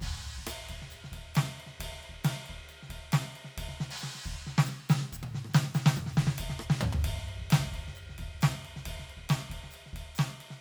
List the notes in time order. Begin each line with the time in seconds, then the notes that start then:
0.01 kick, percussion, crash, floor tom
0.15 kick
0.39 kick
0.47 cross-stick, ride, percussion
0.69 kick, ride
0.76 kick
0.82 snare
0.91 ride, percussion
1.05 snare
1.12 kick, ride
1.18 kick
1.35 snare, ride, percussion
1.44 snare
1.60 ride
1.67 snare
1.80 kick, ride, percussion
1.86 kick
1.93 snare
2.01 snare, ride
2.10 kick
2.15 kick
2.24 snare, ride, percussion
2.46 kick, ride
2.57 snare
2.69 ride, percussion
2.83 snare
2.90 kick, ride
2.96 kick
3.12 snare, ride, percussion
3.36 ride
3.45 snare
3.58 kick, ride, percussion
3.65 kick
3.69 snare
3.81 snare
3.91 crash
3.98 percussion
4.04 snare
4.15 snare
4.25 kick, ride bell, percussion
4.33 kick, snare
4.37 kick, snare
4.47 snare
4.58 snare
4.66 snare, percussion
4.90 snare, percussion
5.01 snare
5.13 kick, high tom, percussion
5.23 high tom, percussion
5.35 snare
5.45 cross-stick
5.50 snare
5.54 snare, percussion
5.64 snare
5.75 snare, percussion
5.86 snare
5.95 kick, mid tom, percussion
6.07 snare
6.14 snare, percussion
6.18 kick
6.24 kick, snare
6.38 kick, ride, percussion
6.47 kick
6.49 kick, snare
6.60 kick, cross-stick
6.70 snare
6.81 percussion, floor tom
6.93 floor tom
7.05 kick, ride
7.18 kick, snare
7.29 ride
7.40 kick
7.51 snare, ride, percussion
7.73 kick, ride
7.79 kick
7.83 kick
7.88 snare
7.95 ride, percussion
8.10 snare
8.18 kick, ride
8.26 kick
8.41 snare, ride, percussion
8.65 ride
8.77 snare
8.86 kick, ride, percussion
8.93 kick
9.00 snare
9.10 ride
9.17 kick
9.30 snare, ride, percussion
9.50 kick, ride
9.56 kick
9.64 snare
9.71 ride, percussion
9.86 snare
9.93 kick, ride
10.00 kick
10.16 snare, ride, percussion
10.41 ride
10.51 snare